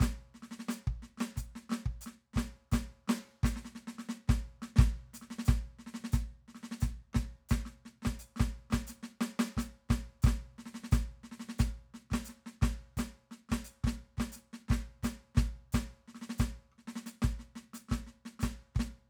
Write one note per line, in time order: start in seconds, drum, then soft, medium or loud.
0.01 kick medium
0.01 snare medium
0.01 hi-hat pedal medium
0.03 snare medium
0.35 snare soft
0.43 snare soft
0.52 snare soft
0.60 snare soft
0.69 snare medium
0.69 hi-hat pedal medium
0.88 kick medium
1.03 snare soft
1.18 snare soft
1.21 snare medium
1.37 kick soft
1.37 snare soft
1.37 hi-hat pedal medium
1.56 snare soft
1.70 snare soft
1.72 snare medium
1.87 kick medium
2.02 hi-hat pedal medium
2.07 snare soft
2.34 kick medium
2.34 snare soft
2.38 snare medium
2.72 kick medium
2.72 snare soft
2.72 hi-hat pedal medium
2.74 snare medium
3.08 snare soft
3.08 snare loud
3.44 kick medium
3.44 snare medium
3.44 hi-hat pedal medium
3.57 snare soft
3.66 snare soft
3.76 snare soft
3.88 snare medium
3.99 snare soft
4.10 snare medium
4.29 kick medium
4.29 snare soft
4.30 snare medium
4.63 snare medium
4.77 kick loud
4.77 snare medium
4.80 snare medium
5.14 snare soft
5.14 hi-hat pedal medium
5.22 snare soft
5.31 snare soft
5.39 snare medium
5.46 kick loud
5.46 snare medium
5.46 hi-hat pedal medium
5.80 snare soft
5.87 snare soft
5.95 snare medium
6.05 snare medium
6.13 kick medium
6.13 snare medium
6.13 hi-hat pedal medium
6.49 snare soft
6.55 snare soft
6.64 snare soft
6.72 snare medium
6.81 kick medium
6.81 snare medium
6.81 hi-hat pedal medium
7.14 kick medium
7.14 cross-stick soft
7.14 snare medium
7.50 kick medium
7.50 snare medium
7.50 hi-hat pedal medium
7.66 snare soft
7.86 snare soft
8.03 snare soft
8.06 kick medium
8.06 snare medium
8.20 hi-hat pedal medium
8.37 snare soft
8.40 kick medium
8.40 snare medium
8.71 snare soft
8.73 kick medium
8.73 snare loud
8.88 snare soft
8.88 hi-hat pedal medium
9.04 snare soft
9.22 snare medium
9.40 snare loud
9.58 kick soft
9.58 snare medium
9.58 hi-hat pedal medium
9.90 kick medium
9.90 snare soft
9.90 snare medium
10.23 kick loud
10.23 snare soft
10.23 hi-hat pedal medium
10.27 snare medium
10.59 snare soft
10.66 snare soft
10.75 snare soft
10.84 snare soft
10.92 kick loud
10.92 snare medium
10.92 hi-hat pedal medium
11.24 snare soft
11.32 snare soft
11.40 snare soft
11.50 snare medium
11.59 kick medium
11.59 snare medium
11.59 hi-hat pedal medium
11.95 snare soft
12.11 kick soft
12.11 snare soft
12.14 snare medium
12.25 snare soft
12.25 hi-hat pedal medium
12.47 snare soft
12.62 kick medium
12.62 snare soft
12.62 snare medium
12.98 kick soft
12.98 snare soft
12.98 snare medium
12.98 hi-hat pedal medium
13.32 snare soft
13.50 kick soft
13.50 snare soft
13.53 snare medium
13.65 hi-hat pedal medium
13.85 kick medium
13.85 snare soft
13.88 snare medium
14.18 kick soft
14.18 snare soft
14.21 snare medium
14.33 snare soft
14.33 hi-hat pedal medium
14.54 snare soft
14.69 kick medium
14.69 snare soft
14.72 snare medium
15.04 kick soft
15.04 snare soft
15.04 hi-hat pedal medium
15.05 snare medium
15.36 snare soft
15.38 kick medium
15.38 snare medium
15.73 kick medium
15.73 snare soft
15.73 snare loud
15.73 hi-hat pedal medium
16.09 snare soft
16.15 snare soft
16.22 snare soft
16.30 snare medium
16.39 kick medium
16.39 snare medium
16.39 hi-hat pedal medium
16.73 cross-stick soft
16.79 snare soft
16.88 snare soft
16.96 snare medium
17.07 snare soft
17.07 hi-hat pedal medium
17.23 kick medium
17.23 snare medium
17.40 snare soft
17.56 snare soft
17.74 snare soft
17.74 hi-hat pedal medium
17.89 kick medium
17.89 snare soft
17.92 snare medium
18.07 snare soft
18.26 snare soft
18.40 kick medium
18.40 snare soft
18.40 hi-hat pedal medium
18.44 snare medium
18.76 kick medium
18.76 snare soft
18.80 snare medium